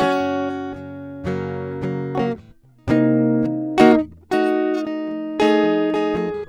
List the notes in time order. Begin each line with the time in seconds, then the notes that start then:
0.00 A3 C#4 F#4
0.05 C#3 F#3
0.51 C#4
0.76 C#3 F#3
1.27 C#3 F#3 A#3 C#4
1.84 C#3 F#3 A#3
2.17 F#4
2.22 F#3 A#3
2.89 C3 A#3 D#4
3.45 C3 A#3
3.79 A#3 D#4 F#4
4.33 A3 D#4 F#4
4.89 D#4
5.09 F3 A3
5.41 A3 D#4 G#4
5.65 F3
5.96 A3 D#4 G#4
6.17 F3 A3 D#4